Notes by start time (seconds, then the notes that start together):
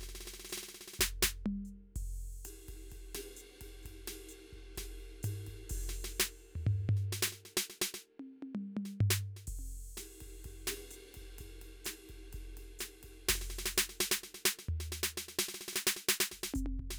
0.01 snare
0.03 snare
0.09 snare
0.15 snare
0.21 snare
0.26 snare
0.27 snare
0.34 snare
0.40 snare
0.45 snare
0.50 snare, hi-hat pedal
0.58 snare
0.63 snare
0.69 snare
0.75 snare
0.81 snare
0.88 snare
0.93 snare, hi-hat pedal
1.00 kick, snare
1.23 kick, snare
1.46 mid tom
1.65 hi-hat pedal
1.96 kick, crash
2.02 kick
2.45 hi-hat pedal, ride
2.69 kick, ride
2.74 kick
2.91 kick, hi-hat pedal, ride
2.97 kick
3.15 snare, ride
3.37 hi-hat pedal
3.61 kick, ride
3.83 kick, hi-hat pedal, ride
3.91 kick
4.08 snare, ride
4.29 hi-hat pedal
4.53 kick, ride
4.58 kick
4.75 kick, snare, hi-hat pedal, ride
4.82 kick
5.00 ride
5.23 hi-hat pedal, ride, floor tom
5.47 kick, ride
5.53 kick
5.70 kick, hi-hat pedal, ride
5.89 snare
6.04 snare
6.20 snare
6.56 floor tom
6.67 floor tom
6.89 floor tom
6.97 snare
7.13 snare
7.23 snare
7.28 snare
7.32 snare
7.45 snare
7.57 snare
7.70 snare
7.82 snare
7.94 snare
8.20 high tom
8.43 high tom
8.55 mid tom
8.77 mid tom
8.85 snare
9.01 kick, floor tom
9.11 snare
9.37 snare
9.47 kick, crash
9.59 high tom
9.97 snare, hi-hat pedal, ride
10.12 snare
10.21 kick, ride
10.27 kick
10.44 kick, hi-hat pedal, ride
10.67 snare, ride
10.77 snare
10.91 hi-hat pedal, ride
11.14 kick, ride
11.22 kick
11.39 kick, hi-hat pedal, ride
11.46 kick
11.62 ride
11.85 snare, hi-hat pedal, ride
12.09 kick, ride
12.15 kick
12.33 kick, hi-hat pedal, ride
12.57 ride
12.79 snare, hi-hat pedal, ride
13.03 kick, ride
13.13 snare
13.29 kick, snare, hi-hat pedal
13.35 snare
13.41 snare
13.50 snare
13.59 snare
13.66 snare
13.78 snare
13.89 snare
14.01 snare
14.12 snare
14.24 snare
14.35 snare
14.46 snare
14.59 snare
14.69 floor tom
14.80 snare
14.92 snare
15.03 snare
15.18 snare
15.29 snare
15.39 snare
15.49 snare
15.54 snare
15.61 snare
15.68 snare
15.73 snare
15.76 snare
15.87 snare
15.97 snare
16.08 snare, hi-hat pedal
16.20 snare
16.32 kick, snare, hi-hat pedal
16.44 snare
16.54 kick, hi-hat pedal, high tom
16.63 kick, high tom
16.80 kick
16.88 kick, snare